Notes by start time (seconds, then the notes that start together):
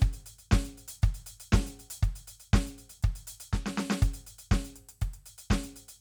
0.01 closed hi-hat, kick
0.13 closed hi-hat
0.26 closed hi-hat
0.39 closed hi-hat
0.51 kick, snare
0.65 closed hi-hat
0.78 closed hi-hat
0.88 closed hi-hat
1.02 closed hi-hat, kick
1.14 closed hi-hat
1.26 closed hi-hat
1.40 closed hi-hat
1.52 kick, snare
1.67 closed hi-hat
1.79 closed hi-hat
1.90 closed hi-hat
2.03 kick, closed hi-hat
2.16 closed hi-hat
2.27 closed hi-hat
2.40 closed hi-hat
2.53 kick, snare
2.67 closed hi-hat
2.78 closed hi-hat
2.90 closed hi-hat
3.03 kick, closed hi-hat
3.15 closed hi-hat
3.27 closed hi-hat
3.40 closed hi-hat
3.53 kick, snare
3.66 snare
3.78 snare
3.90 snare
4.02 closed hi-hat, kick
4.14 closed hi-hat
4.27 closed hi-hat
4.39 closed hi-hat
4.51 kick, snare
4.65 closed hi-hat
4.76 closed hi-hat
4.89 closed hi-hat
5.02 kick, closed hi-hat
5.14 closed hi-hat
5.26 closed hi-hat
5.38 closed hi-hat
5.50 kick, snare
5.63 closed hi-hat
5.76 closed hi-hat
5.88 closed hi-hat